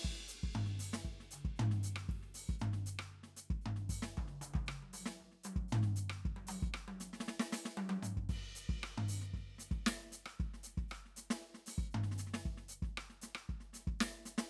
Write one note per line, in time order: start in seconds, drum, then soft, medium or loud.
0.01 hi-hat pedal soft
0.05 kick soft
0.20 snare soft
0.28 hi-hat pedal loud
0.34 snare soft
0.44 kick soft
0.53 floor tom loud
0.53 hi-hat pedal soft
0.66 snare soft
0.80 snare soft
0.80 hi-hat pedal loud
0.93 snare medium
1.05 kick soft
1.20 snare soft
1.31 hi-hat pedal loud
1.31 mid tom soft
1.45 kick soft
1.56 floor tom loud
1.56 hi-hat pedal soft
1.71 snare soft
1.83 hi-hat pedal loud
1.83 ride soft
1.96 cross-stick medium
2.08 kick soft
2.08 hi-hat pedal soft
2.08 ride soft
2.23 snare soft
2.34 snare soft
2.34 hi-hat pedal loud
2.49 kick soft
2.59 floor tom loud
2.59 hi-hat pedal soft
2.73 snare soft
2.86 hi-hat pedal loud
2.99 cross-stick medium
3.23 snare soft
3.37 snare soft
3.37 hi-hat pedal loud
3.50 kick medium
3.62 hi-hat pedal soft
3.66 floor tom medium
3.76 snare soft
3.90 kick soft
3.90 hi-hat pedal loud
4.02 snare medium
4.17 kick soft
4.17 mid tom medium
4.28 snare soft
4.42 hi-hat pedal loud
4.42 mid tom medium
4.54 kick medium
4.54 mid tom medium
4.66 cross-stick medium
4.66 hi-hat pedal soft
4.83 high tom soft
4.93 hi-hat pedal medium
4.93 high tom soft
5.06 snare medium
5.20 kick soft
5.20 high tom soft
5.32 snare soft
5.44 hi-hat pedal medium
5.44 high tom medium
5.56 kick soft
5.68 hi-hat pedal soft
5.73 floor tom loud
5.83 snare soft
5.96 kick soft
5.96 hi-hat pedal medium
6.10 cross-stick medium
6.25 kick soft
6.37 high tom medium
6.47 hi-hat pedal medium
6.47 high tom medium
6.63 kick medium
6.73 cross-stick medium
6.73 hi-hat pedal soft
6.88 high tom medium
7.00 snare soft
7.00 hi-hat pedal medium
7.13 snare soft
7.20 snare medium
7.26 snare medium
7.26 hi-hat pedal soft
7.40 snare medium
7.53 snare medium
7.53 hi-hat pedal medium
7.65 snare medium
7.76 hi-hat pedal soft
7.76 high tom medium
7.90 high tom medium
8.03 floor tom medium
8.03 hi-hat pedal medium
8.17 kick soft
8.29 kick soft
8.29 hi-hat pedal soft
8.29 crash medium
8.55 hi-hat pedal medium
8.69 kick medium
8.83 cross-stick medium
8.98 floor tom loud
9.09 snare soft
9.09 hi-hat pedal loud
9.21 snare soft
9.34 kick soft
9.34 snare soft
9.59 snare soft
9.59 hi-hat pedal loud
9.71 kick soft
9.71 snare soft
9.85 snare loud
9.85 hi-hat pedal soft
10.00 snare soft
10.12 snare soft
10.12 hi-hat pedal loud
10.26 cross-stick medium
10.39 kick soft
10.39 snare soft
10.54 snare soft
10.63 snare soft
10.63 hi-hat pedal loud
10.78 kick soft
10.78 snare soft
10.88 cross-stick medium
10.88 hi-hat pedal soft
11.06 snare soft
11.17 snare soft
11.17 hi-hat pedal loud
11.30 snare medium
11.41 snare soft
11.41 hi-hat pedal soft
11.55 snare soft
11.66 snare soft
11.66 hi-hat pedal medium
11.78 kick soft
11.91 floor tom loud
11.91 hi-hat pedal soft
12.04 snare soft
12.12 snare soft
12.18 snare soft
12.18 hi-hat pedal medium
12.27 snare soft
12.34 snare medium
12.46 kick soft
12.46 snare soft
12.58 snare soft
12.69 snare soft
12.69 hi-hat pedal medium
12.83 kick soft
12.83 snare soft
12.98 cross-stick medium
13.10 snare soft
13.22 snare soft
13.22 hi-hat pedal medium
13.35 cross-stick medium
13.49 kick soft
13.49 snare soft
13.60 snare soft
13.73 snare soft
13.73 hi-hat pedal medium
13.76 snare soft
13.87 kick soft
13.99 snare medium
13.99 hi-hat pedal soft
14.14 snare soft
14.26 snare soft
14.26 hi-hat pedal medium
14.38 snare medium